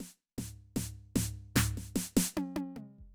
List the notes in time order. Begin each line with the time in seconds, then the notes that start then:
0.00 snare
0.38 snare, floor tom
0.76 snare, floor tom
1.16 snare, floor tom
1.56 snare, floor tom
1.77 snare
1.96 snare
2.17 snare
2.37 high tom
2.56 high tom
2.76 mid tom
2.98 kick